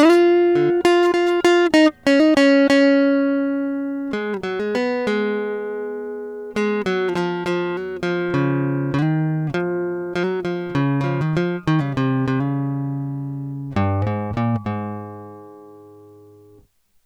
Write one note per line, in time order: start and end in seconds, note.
0.00 0.84 F4
0.57 0.74 D3
0.87 1.16 F4
1.16 1.44 F4
1.46 1.71 F4
1.75 1.94 D#4
2.08 2.21 C#4
2.21 2.38 D#4
2.39 2.72 C#4
2.72 4.17 C#4
4.15 4.44 G#3
4.45 4.62 F#3
4.62 4.81 G#3
4.77 5.17 B3
5.09 6.56 G#3
6.58 6.86 G#3
6.88 7.17 F#3
7.18 7.48 F3
7.48 7.79 F3
7.79 8.02 F#3
8.05 9.00 F3
8.36 8.95 C#3
8.96 9.05 D3
9.05 9.50 D#3
9.56 10.16 F3
10.17 10.46 F#3
10.47 10.91 F3
10.77 11.02 C#3
11.03 11.23 C#3
11.03 11.27 F3
11.23 11.41 D#3
11.38 11.63 F3
11.69 11.81 D#3
11.82 11.98 C#3
11.82 13.60 G3
11.99 12.29 C3
12.30 13.77 C#3
13.79 14.04 G2
14.04 14.36 G#2
14.40 14.61 A#2
14.68 16.67 G#2